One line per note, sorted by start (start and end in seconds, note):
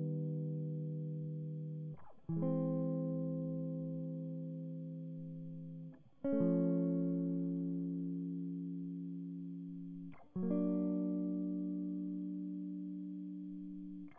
2.30 5.97 E3
2.37 5.82 G#3
2.43 5.98 C4
6.25 10.13 C#4
6.33 9.04 A3
6.41 10.18 F3
10.36 14.08 F#3
10.43 13.49 A#3
10.51 14.11 D4